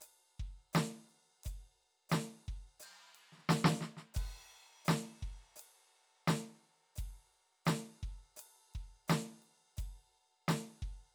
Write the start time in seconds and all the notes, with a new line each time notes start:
0.01 hi-hat pedal, ride
0.40 kick, ride
0.73 snare, hi-hat pedal, ride
1.10 ride
1.44 kick, hi-hat pedal, ride
2.10 snare, hi-hat pedal, ride
2.47 kick, ride
2.80 hi-hat pedal, ride
3.02 ride
3.15 ride
3.33 snare
3.39 snare
3.43 snare
3.47 snare
3.49 snare, hi-hat pedal
3.65 snare
3.81 snare
3.97 snare
4.14 kick, hi-hat pedal, crash
4.85 snare, hi-hat pedal, ride
5.23 kick
5.56 hi-hat pedal, ride
6.28 snare, hi-hat pedal, ride
6.96 kick, hi-hat pedal, ride
7.33 ride
7.66 snare, hi-hat pedal, ride
8.03 kick, ride
8.37 hi-hat pedal, ride
8.74 kick, ride
9.08 snare, hi-hat pedal, ride
9.42 ride
9.77 kick, hi-hat pedal, ride
10.49 snare, hi-hat pedal, ride
10.83 kick